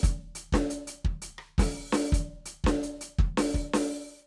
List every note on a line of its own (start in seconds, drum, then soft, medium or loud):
0.02 closed hi-hat loud
0.02 kick loud
0.02 hi-hat pedal soft
0.35 closed hi-hat loud
0.53 kick loud
0.53 snare loud
0.70 closed hi-hat loud
0.87 closed hi-hat loud
1.05 kick loud
1.22 closed hi-hat loud
1.38 cross-stick medium
1.58 open hi-hat loud
1.58 kick loud
1.58 snare loud
1.93 open hi-hat loud
1.93 snare loud
2.09 kick loud
2.09 hi-hat pedal soft
2.14 closed hi-hat loud
2.46 closed hi-hat loud
2.64 kick loud
2.64 snare loud
2.83 closed hi-hat loud
3.01 closed hi-hat loud
3.19 kick loud
3.37 open hi-hat loud
3.37 snare loud
3.54 kick medium
3.74 open hi-hat loud
3.74 snare loud
4.19 hi-hat pedal soft